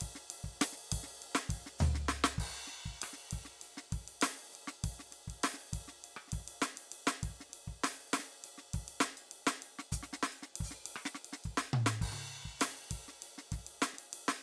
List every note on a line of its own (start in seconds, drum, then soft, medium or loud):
0.01 kick soft
0.01 hi-hat pedal soft
0.01 ride medium
0.15 snare soft
0.30 ride medium
0.44 kick soft
0.61 snare loud
0.61 hi-hat pedal medium
0.61 ride loud
0.72 snare soft
0.92 kick soft
0.92 ride loud
1.00 kick soft
1.00 snare soft
1.21 hi-hat pedal soft
1.21 ride medium
1.35 snare loud
1.49 kick medium
1.49 ride medium
1.57 kick soft
1.60 kick soft
1.66 snare soft
1.78 floor tom loud
1.78 hi-hat pedal medium
1.95 snare medium
2.08 snare medium
2.24 snare loud
2.38 kick medium
2.38 crash medium
2.48 kick soft
2.58 cross-stick soft
2.67 snare soft
2.85 kick soft
2.91 kick soft
3.01 kick soft
3.01 cross-stick medium
3.01 hi-hat pedal soft
3.01 ride loud
3.13 snare soft
3.31 kick soft
3.31 ride medium
3.39 kick soft
3.45 snare soft
3.61 hi-hat pedal soft
3.61 ride medium
3.77 snare medium
3.90 kick soft
3.90 snare soft
3.90 ride medium
3.99 kick soft
4.08 ride medium
4.21 snare loud
4.21 hi-hat pedal medium
4.21 ride loud
4.52 hi-hat pedal soft
4.52 ride medium
4.67 snare medium
4.84 kick medium
4.84 hi-hat pedal soft
4.84 ride medium
4.91 kick soft
4.99 snare soft
5.11 snare soft
5.11 ride medium
5.27 kick soft
5.27 ride medium
5.43 snare loud
5.43 hi-hat pedal medium
5.43 ride loud
5.54 snare soft
5.73 kick soft
5.73 ride medium
5.79 kick soft
5.88 snare soft
6.04 hi-hat pedal soft
6.04 ride medium
6.16 cross-stick medium
6.28 snare soft
6.32 kick soft
6.32 ride medium
6.40 kick soft
6.48 ride medium
6.62 snare loud
6.62 hi-hat pedal medium
6.75 snare soft
6.75 ride medium
6.92 ride medium
7.07 snare loud
7.23 kick soft
7.23 ride medium
7.29 kick soft
7.40 snare soft
7.49 snare soft
7.49 ride medium
7.67 kick soft
7.83 snare loud
7.83 hi-hat pedal loud
7.83 ride loud
8.10 snare loud
8.10 hi-hat pedal soft
8.10 ride medium
8.19 snare soft
8.44 hi-hat pedal soft
8.44 ride medium
8.58 snare soft
8.73 kick soft
8.73 ride medium
8.81 kick soft
8.88 ride medium
9.00 snare loud
9.00 hi-hat pedal medium
9.17 ride bell soft
9.31 ride medium
9.47 snare loud
9.55 hi-hat pedal soft
9.62 ride medium
9.79 snare medium
9.92 kick soft
9.92 hi-hat pedal loud
9.92 ride medium
9.99 kick soft
9.99 snare soft
10.23 snare medium
10.32 hi-hat pedal soft
10.32 ride bell soft
10.42 snare medium
10.55 ride medium
10.60 kick soft
10.60 hi-hat pedal medium
10.67 kick soft
10.67 snare soft
10.86 ride medium
10.96 cross-stick medium
11.05 snare medium
11.14 snare medium
11.25 ride medium
11.33 snare medium
11.44 kick soft
11.44 ride bell soft
11.54 kick soft
11.54 snare loud
11.73 mid tom loud
11.86 snare loud
12.01 kick medium
12.01 crash medium
12.09 kick soft
12.09 high tom soft
12.45 kick soft
12.59 snare loud
12.59 hi-hat pedal medium
12.59 ride loud
12.91 kick soft
12.91 ride medium
13.08 snare soft
13.22 ride medium
13.38 snare soft
13.52 kick soft
13.52 snare soft
13.52 ride medium
13.59 kick soft
13.67 ride medium
13.82 snare loud
13.82 hi-hat pedal medium
13.93 snare soft
13.98 ride medium
14.13 ride medium
14.28 snare loud
14.39 hi-hat pedal soft